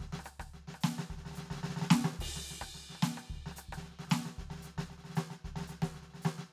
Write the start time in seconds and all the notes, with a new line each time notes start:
0.01 kick, snare
0.13 snare
0.20 cross-stick
0.25 cross-stick, hi-hat pedal
0.40 kick, cross-stick
0.55 snare
0.61 snare
0.65 snare
0.68 snare
0.75 cross-stick
0.82 snare, hi-hat pedal
0.99 snare
1.11 kick, snare
1.19 snare
1.25 snare
1.26 snare
1.32 snare, hi-hat pedal
1.38 snare
1.44 snare
1.51 kick, snare
1.56 snare
1.64 snare
1.70 snare
1.77 snare
1.82 snare
1.88 snare
1.91 snare, hi-hat pedal
2.05 snare
2.13 snare
2.20 kick, crash
2.27 kick
2.37 snare
2.47 hi-hat pedal
2.51 snare
2.62 kick, cross-stick
2.75 snare
2.81 snare
2.86 snare
2.90 snare
2.96 cross-stick
2.99 cross-stick
3.03 snare, hi-hat pedal
3.18 cross-stick
3.31 kick, snare
3.37 kick
3.47 snare
3.52 cross-stick
3.57 cross-stick, snare, hi-hat pedal
3.69 kick, cross-stick
3.78 snare
3.84 snare
3.91 snare
4.00 snare
4.04 cross-stick, snare
4.11 snare, hi-hat pedal
4.26 snare
4.39 kick, snare
4.45 kick
4.51 snare
4.56 snare
4.59 snare, hi-hat pedal
4.65 snare
4.78 kick, snare
4.91 snare
4.99 snare
5.05 snare
5.10 snare
5.15 snare, hi-hat pedal
5.18 snare
5.31 snare
5.45 kick, snare
5.57 snare
5.61 snare
5.66 snare, hi-hat pedal
5.70 snare
5.83 kick, snare
5.95 snare
6.03 snare
6.09 snare
6.15 snare
6.23 snare, hi-hat pedal
6.39 snare